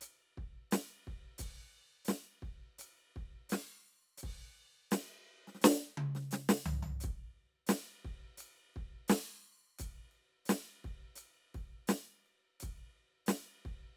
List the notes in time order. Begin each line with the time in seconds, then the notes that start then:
0.01 hi-hat pedal, ride
0.36 kick, ride
0.71 snare, hi-hat pedal, ride
1.05 kick, ride
1.38 kick, hi-hat pedal, crash
2.05 snare, hi-hat pedal, ride
2.42 kick, ride
2.79 hi-hat pedal, ride
3.16 kick, ride
3.49 snare, hi-hat pedal, crash
3.86 ride
4.18 hi-hat pedal
4.23 kick, crash
4.57 ride
4.91 snare, hi-hat pedal, ride
5.27 ride
5.47 snare
5.55 snare
5.61 snare, hi-hat pedal
5.64 snare
5.97 mid tom
6.15 snare
6.31 snare, hi-hat pedal
6.49 snare
6.66 floor tom
6.83 floor tom
7.00 kick, hi-hat pedal, ride
7.67 snare, hi-hat pedal, ride
8.05 kick, ride
8.37 hi-hat pedal, ride
8.74 kick, ride
9.08 snare, hi-hat pedal, crash
9.79 kick, hi-hat pedal, ride
10.11 ride
10.45 snare, hi-hat pedal
10.50 ride
10.84 kick, ride
11.16 hi-hat pedal, ride
11.55 kick, ride
11.87 snare, hi-hat pedal, ride
12.26 ride
12.60 kick, hi-hat pedal, ride
12.91 ride
13.26 snare, hi-hat pedal, ride
13.65 kick, ride